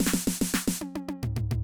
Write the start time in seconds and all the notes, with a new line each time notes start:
0.00 snare
0.06 snare
0.13 snare
0.27 snare
0.41 snare
0.54 snare
0.68 snare
0.81 high tom
0.95 high tom
1.09 high tom
1.23 floor tom
1.36 floor tom
1.51 floor tom